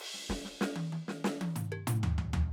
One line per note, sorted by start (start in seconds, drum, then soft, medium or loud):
0.00 ride loud
0.14 snare soft
0.18 snare soft
0.22 snare soft
0.25 snare soft
0.29 kick soft
0.29 snare medium
0.45 snare medium
0.61 snare loud
0.76 high tom loud
0.92 high tom medium
1.08 snare medium
1.24 snare loud
1.41 open hi-hat soft
1.41 high tom loud
1.56 mid tom loud
1.72 percussion loud
1.87 mid tom loud
2.03 floor tom loud
2.18 floor tom loud
2.33 floor tom loud